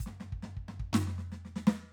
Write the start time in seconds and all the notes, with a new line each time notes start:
0.01 kick, hi-hat pedal
0.07 snare, floor tom
0.21 snare, floor tom
0.33 kick
0.43 snare, floor tom
0.57 kick
0.69 snare, floor tom
0.80 kick
0.94 snare, floor tom
1.08 snare
1.19 snare
1.32 snare
1.45 snare
1.56 snare
1.68 snare